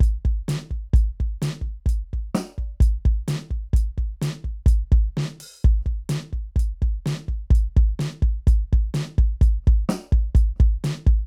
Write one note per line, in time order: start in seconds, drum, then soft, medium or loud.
0.01 closed hi-hat medium
0.01 kick loud
0.25 kick medium
0.49 closed hi-hat loud
0.49 snare loud
0.57 snare soft
0.71 kick medium
0.94 closed hi-hat medium
0.94 kick loud
1.21 kick medium
1.42 closed hi-hat loud
1.42 snare loud
1.62 kick medium
1.86 closed hi-hat medium
1.86 kick medium
2.14 kick medium
2.35 closed hi-hat loud
2.35 snare loud
2.58 kick medium
2.81 closed hi-hat loud
2.81 kick loud
3.06 kick loud
3.29 closed hi-hat loud
3.29 snare loud
3.37 snare soft
3.51 kick medium
3.74 closed hi-hat loud
3.74 kick loud
3.98 kick medium
4.22 closed hi-hat loud
4.22 snare loud
4.45 kick medium
4.67 closed hi-hat loud
4.67 kick loud
4.92 kick loud
5.18 snare loud
5.26 snare soft
5.41 open hi-hat loud
5.63 kick loud
5.63 hi-hat pedal soft
5.82 snare soft
5.86 kick medium
6.10 closed hi-hat loud
6.10 snare loud
6.33 kick medium
6.57 closed hi-hat medium
6.57 kick medium
6.82 kick medium
7.06 closed hi-hat medium
7.06 snare loud
7.15 snare soft
7.24 snare soft
7.29 kick medium
7.51 kick loud
7.56 closed hi-hat medium
7.77 kick loud
8.00 closed hi-hat medium
8.00 snare loud
8.23 kick loud
8.48 closed hi-hat medium
8.48 kick loud
8.73 kick loud
8.95 closed hi-hat medium
8.95 snare loud
9.03 snare soft
9.19 kick loud
9.42 closed hi-hat medium
9.42 kick loud
9.65 kick loud
9.65 snare soft
9.90 closed hi-hat loud
9.90 snare loud
10.13 kick loud
10.35 closed hi-hat medium
10.35 kick loud
10.57 kick loud
10.57 snare soft
10.85 closed hi-hat loud
10.85 snare loud
11.07 kick loud